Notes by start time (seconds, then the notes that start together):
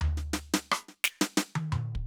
0.02 floor tom
0.17 snare
0.33 snare
0.54 snare
0.72 cross-stick
0.88 snare
1.04 snare
1.21 snare
1.37 snare
1.55 high tom
1.72 mid tom
1.95 kick